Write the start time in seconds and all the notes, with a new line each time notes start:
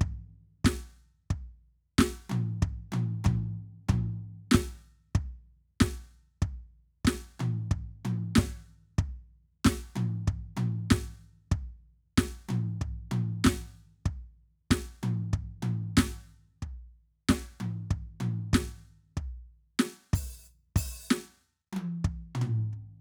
0.01 kick
0.65 kick, snare
1.30 kick
1.98 kick, snare
2.01 snare
2.30 floor tom, high tom
2.62 kick
2.92 floor tom, high tom
3.24 kick, floor tom, high tom
3.89 kick, floor tom, high tom
4.51 snare
4.54 kick, snare
5.15 kick
5.80 kick, snare
6.42 kick
7.05 kick, snare
7.40 floor tom, high tom
7.71 kick
8.05 floor tom, high tom
8.36 snare
8.37 kick, snare
8.98 kick
9.65 kick, snare
9.66 snare
9.96 floor tom, high tom
10.28 kick
10.57 floor tom, high tom
10.91 kick, snare
11.52 kick
12.18 kick, snare
12.49 floor tom, high tom
12.81 kick
13.11 floor tom, high tom
13.44 kick, snare
13.47 snare
14.06 kick
14.71 kick, snare
15.03 floor tom, high tom
15.33 kick
15.63 floor tom, high tom
15.97 kick, snare
15.99 snare
16.62 kick
17.29 kick, snare
17.60 floor tom, high tom
17.91 kick
18.20 floor tom, high tom
18.53 kick, snare
19.17 kick
19.79 snare
20.13 kick, percussion
20.44 percussion
20.76 kick, percussion
21.08 snare, percussion
21.73 high tom
21.76 high tom
22.05 kick
22.35 floor tom
22.41 floor tom
22.73 kick